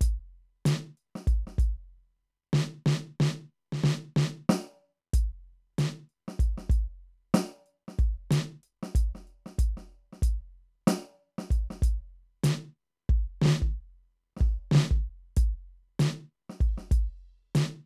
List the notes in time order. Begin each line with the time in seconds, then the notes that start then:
0.01 closed hi-hat, kick
0.66 closed hi-hat, snare
0.97 closed hi-hat
1.16 snare
1.27 closed hi-hat, kick
1.47 snare
1.59 closed hi-hat, kick
2.53 snare
2.86 snare
3.20 snare
3.73 snare
3.84 snare
4.16 snare
4.49 snare
5.14 closed hi-hat, kick
5.79 closed hi-hat, snare
6.09 closed hi-hat
6.28 snare
6.39 closed hi-hat, kick
6.58 snare
6.70 closed hi-hat, kick
7.34 closed hi-hat, snare
7.66 closed hi-hat
7.88 snare
7.99 kick, closed hi-hat
8.31 closed hi-hat, snare
8.63 closed hi-hat
8.83 snare
8.95 closed hi-hat, kick
9.15 snare
9.27 closed hi-hat
9.46 snare
9.59 closed hi-hat, kick
9.77 snare
9.92 closed hi-hat
10.13 snare
10.22 closed hi-hat, kick
10.88 closed hi-hat, snare
11.38 snare
11.51 closed hi-hat, kick
11.71 snare
11.82 closed hi-hat, kick
12.44 closed hi-hat, snare
13.09 kick
13.42 snare
13.46 snare
13.62 kick
14.37 kick, snare
14.41 kick
14.72 snare
14.75 snare
14.91 kick
15.37 closed hi-hat, kick
16.00 closed hi-hat, snare
16.50 snare
16.61 kick, closed hi-hat
16.65 crash
16.78 snare
16.91 closed hi-hat, kick
17.55 closed hi-hat, snare